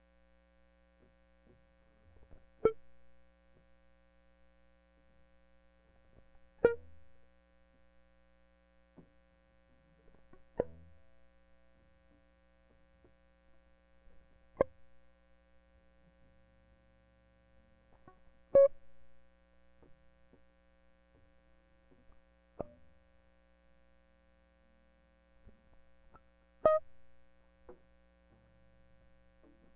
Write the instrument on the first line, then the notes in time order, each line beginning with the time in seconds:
electric guitar
2.66 A4
6.65 A#4
10.60 B4
18.56 C#5
22.61 D5
26.66 D#5